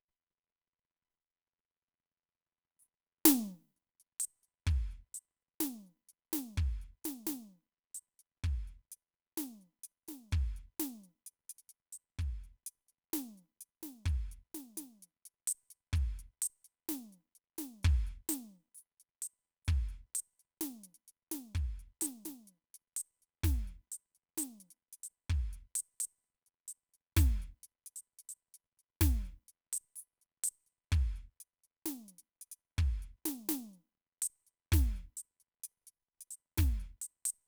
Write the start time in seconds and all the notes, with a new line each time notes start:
2.79 hi-hat pedal
3.25 snare
3.34 snare
3.76 closed hi-hat
4.00 closed hi-hat
4.20 closed hi-hat
4.43 closed hi-hat
4.67 kick, closed hi-hat
4.91 closed hi-hat
5.14 closed hi-hat
5.41 closed hi-hat
5.60 snare, closed hi-hat
5.86 closed hi-hat
6.09 closed hi-hat
6.33 snare, closed hi-hat
6.57 kick
6.81 closed hi-hat
7.04 snare, closed hi-hat
7.27 snare, closed hi-hat
7.94 closed hi-hat
8.19 closed hi-hat
8.44 kick, closed hi-hat
8.67 closed hi-hat
8.92 closed hi-hat
9.37 snare, closed hi-hat
9.61 closed hi-hat
9.83 closed hi-hat
10.08 snare, closed hi-hat
10.31 kick, closed hi-hat
10.56 closed hi-hat
10.79 snare, closed hi-hat
11.03 closed hi-hat
11.26 closed hi-hat
11.49 closed hi-hat
11.58 closed hi-hat
11.69 closed hi-hat
11.92 closed hi-hat
12.19 kick, closed hi-hat
12.44 closed hi-hat
12.66 closed hi-hat
12.88 closed hi-hat
13.13 snare, closed hi-hat
13.37 closed hi-hat
13.61 closed hi-hat
13.83 snare, closed hi-hat
14.05 kick, closed hi-hat
14.31 closed hi-hat
14.54 snare, closed hi-hat
14.77 snare, closed hi-hat
15.02 closed hi-hat
15.25 closed hi-hat
15.47 closed hi-hat
15.70 closed hi-hat
15.93 kick, closed hi-hat
16.19 closed hi-hat
16.42 closed hi-hat
16.64 closed hi-hat
16.89 snare, closed hi-hat
17.12 closed hi-hat
17.35 closed hi-hat
17.58 snare, closed hi-hat
17.83 kick, closed hi-hat
18.06 closed hi-hat
18.29 closed hi-hat, snare
18.74 closed hi-hat, hi-hat pedal
19.00 closed hi-hat
19.22 open hi-hat
19.65 kick, closed hi-hat, hi-hat pedal
19.88 closed hi-hat
20.15 closed hi-hat
20.39 closed hi-hat
20.61 snare, closed hi-hat
20.83 closed hi-hat
20.94 closed hi-hat
21.08 closed hi-hat
21.31 snare, closed hi-hat
21.55 kick, closed hi-hat
21.79 closed hi-hat
22.01 closed hi-hat, snare
22.25 snare, closed hi-hat
22.47 closed hi-hat
22.74 closed hi-hat
22.96 closed hi-hat
23.22 closed hi-hat
23.43 kick, snare, closed hi-hat
23.67 closed hi-hat
23.92 closed hi-hat
24.15 closed hi-hat
24.38 closed hi-hat, snare
24.60 closed hi-hat
24.70 closed hi-hat
24.93 closed hi-hat
25.03 closed hi-hat
25.29 kick, closed hi-hat
25.53 closed hi-hat
25.75 closed hi-hat
26.00 closed hi-hat
26.26 closed hi-hat
26.46 closed hi-hat
26.68 closed hi-hat
26.94 closed hi-hat
27.16 closed hi-hat, kick, snare
27.42 closed hi-hat
27.63 closed hi-hat
27.86 closed hi-hat
27.96 closed hi-hat
28.19 closed hi-hat
28.29 closed hi-hat
28.54 closed hi-hat
28.79 closed hi-hat
29.01 kick, snare, closed hi-hat
29.25 closed hi-hat
29.48 closed hi-hat
29.73 closed hi-hat
29.96 hi-hat pedal
30.00 closed hi-hat
30.21 closed hi-hat
30.44 closed hi-hat
30.66 closed hi-hat
30.92 kick, closed hi-hat
31.16 closed hi-hat
31.40 closed hi-hat
31.63 closed hi-hat
31.86 snare, closed hi-hat
32.08 closed hi-hat
32.18 closed hi-hat
32.41 closed hi-hat
32.51 closed hi-hat
32.78 kick, closed hi-hat
33.02 closed hi-hat
33.25 snare, closed hi-hat
33.49 snare, closed hi-hat
33.73 closed hi-hat
34.22 closed hi-hat
34.46 closed hi-hat
34.72 kick, snare, closed hi-hat
34.96 closed hi-hat
35.17 closed hi-hat
35.40 closed hi-hat
35.63 closed hi-hat
35.87 closed hi-hat
36.21 closed hi-hat
36.30 closed hi-hat
36.57 kick, snare, closed hi-hat
36.80 closed hi-hat
37.01 closed hi-hat
37.25 closed hi-hat